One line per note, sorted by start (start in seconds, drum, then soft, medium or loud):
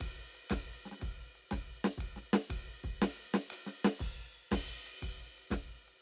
0.01 kick medium
0.01 ride loud
0.35 ride medium
0.50 kick medium
0.50 snare medium
0.50 hi-hat pedal medium
0.50 ride loud
0.86 snare soft
0.92 snare soft
1.00 kick medium
1.00 snare soft
1.00 ride medium
1.36 ride soft
1.51 kick medium
1.51 snare medium
1.51 hi-hat pedal medium
1.51 ride loud
1.85 snare loud
1.98 kick medium
1.98 ride loud
2.16 snare soft
2.34 snare loud
2.50 kick medium
2.50 ride loud
2.84 kick medium
3.02 snare loud
3.02 ride loud
3.34 snare loud
3.51 hi-hat pedal loud
3.51 ride loud
3.67 snare medium
3.85 snare loud
3.99 kick medium
3.99 crash medium
4.51 kick medium
4.51 snare loud
4.51 hi-hat pedal soft
4.51 ride medium
4.87 ride medium
5.03 kick medium
5.03 ride medium
5.38 ride soft
5.51 kick medium
5.51 snare medium
5.51 hi-hat pedal medium
5.51 ride medium
5.88 ride soft